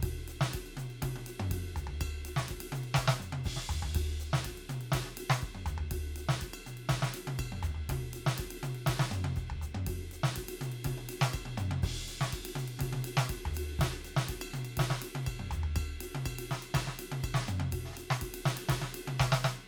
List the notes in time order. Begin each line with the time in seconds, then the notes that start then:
0.01 kick, hi-hat pedal, ride
0.28 hi-hat pedal, ride
0.41 snare
0.53 kick, hi-hat pedal, ride
0.66 ride bell
0.77 hi-hat pedal, high tom
0.90 ride bell
1.02 kick, hi-hat pedal, high tom, ride
1.16 high tom
1.27 hi-hat pedal, ride
1.40 mid tom
1.51 kick, hi-hat pedal, ride
1.76 floor tom, hi-hat pedal
1.87 floor tom
2.01 kick, hi-hat pedal, ride bell
2.25 hi-hat pedal, ride
2.36 snare
2.49 kick, hi-hat pedal, ride
2.61 ride
2.72 hi-hat pedal, high tom
2.84 ride bell
2.94 kick, snare, hi-hat pedal, ride bell
3.08 snare
3.20 hi-hat pedal, mid tom
3.33 high tom
3.44 kick, hi-hat pedal, ride
3.57 snare
3.69 floor tom, hi-hat pedal
3.83 floor tom
3.95 kick, hi-hat pedal, ride
4.20 hi-hat pedal, ride
4.33 snare
4.44 kick, hi-hat pedal, ride
4.58 ride
4.69 hi-hat pedal, high tom
4.81 ride
4.92 kick, snare, hi-hat pedal, ride
5.06 snare
5.17 hi-hat pedal, ride
5.30 snare
5.42 kick, hi-hat pedal, ride bell
5.55 mid tom
5.66 floor tom, hi-hat pedal
5.78 floor tom
5.91 kick, hi-hat pedal, ride
6.16 hi-hat pedal, ride
6.29 snare
6.41 kick, hi-hat pedal, ride
6.54 ride bell
6.67 hi-hat pedal, high tom
6.77 ride
6.89 kick, snare, hi-hat pedal, ride bell
7.02 snare
7.14 hi-hat pedal, ride
7.27 high tom
7.38 kick, hi-hat pedal, ride bell
7.52 mid tom
7.63 floor tom, hi-hat pedal
7.75 floor tom
7.89 kick, hi-hat pedal, high tom, ride
8.13 hi-hat pedal, ride
8.27 snare
8.38 kick, hi-hat pedal, ride
8.51 ride
8.63 hi-hat pedal, high tom
8.75 ride
8.86 kick, snare, hi-hat pedal, ride
9.00 snare
9.11 hi-hat pedal, mid tom
9.24 high tom
9.36 kick, hi-hat pedal, ride bell, floor tom
9.50 floor tom
9.62 floor tom, hi-hat pedal
9.75 mid tom
9.87 kick, hi-hat pedal, ride
10.11 hi-hat pedal, ride
10.24 snare
10.36 kick, hi-hat pedal, ride
10.49 ride
10.61 hi-hat pedal, high tom
10.72 ride
10.85 kick, hi-hat pedal, high tom, ride
10.98 high tom
11.09 hi-hat pedal, ride
11.21 snare
11.34 kick, hi-hat pedal, ride bell
11.45 high tom
11.54 kick, hi-hat pedal, mid tom
11.71 high tom
11.82 kick, hi-hat pedal, ride
12.08 hi-hat pedal, ride
12.21 snare
12.33 kick, hi-hat pedal, ride
12.45 ride
12.56 hi-hat pedal, high tom
12.68 ride
12.79 kick, hi-hat pedal, high tom, ride
12.93 high tom
13.05 hi-hat pedal, ride
13.17 snare
13.29 kick, hi-hat pedal, ride
13.45 floor tom
13.54 hi-hat pedal, ride
13.79 kick, snare, hi-hat pedal, ride
14.05 hi-hat pedal, ride bell
14.17 snare
14.29 kick, hi-hat pedal, ride
14.42 ride bell
14.54 hi-hat pedal, high tom
14.65 ride bell
14.77 kick, snare, hi-hat pedal, ride
14.90 snare
15.02 hi-hat pedal, ride
15.15 high tom
15.27 kick, hi-hat pedal, ride bell
15.40 mid tom
15.48 kick, floor tom, hi-hat pedal
15.64 floor tom
15.76 kick, hi-hat pedal, ride bell
16.01 hi-hat pedal, ride
16.15 high tom
16.25 kick, hi-hat pedal, ride bell
16.39 ride
16.51 snare, hi-hat pedal
16.62 ride bell
16.74 kick, snare, hi-hat pedal, ride bell
16.87 snare
16.99 hi-hat pedal, ride
17.12 high tom
17.23 kick, hi-hat pedal, ride bell
17.34 snare
17.41 snare
17.48 hi-hat pedal, mid tom
17.60 high tom
17.72 kick, hi-hat pedal, ride
17.85 snare
17.90 snare
17.93 snare
17.97 hi-hat pedal, ride
18.10 snare
18.22 kick, hi-hat pedal, ride
18.34 ride
18.46 snare, hi-hat pedal
18.57 ride
18.69 kick, snare, hi-hat pedal, ride
18.82 snare
18.94 hi-hat pedal, ride
19.08 high tom
19.19 kick, snare, hi-hat pedal
19.32 snare
19.43 snare, hi-hat pedal